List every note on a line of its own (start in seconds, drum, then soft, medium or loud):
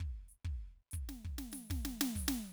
0.00 kick soft
0.28 hi-hat pedal soft
0.45 kick soft
0.91 kick soft
0.91 hi-hat pedal medium
1.09 snare soft
1.25 kick soft
1.38 snare soft
1.52 snare soft
1.52 hi-hat pedal medium
1.70 kick soft
1.70 snare soft
1.85 snare medium
2.01 snare medium
2.15 kick soft
2.15 hi-hat pedal medium
2.28 snare medium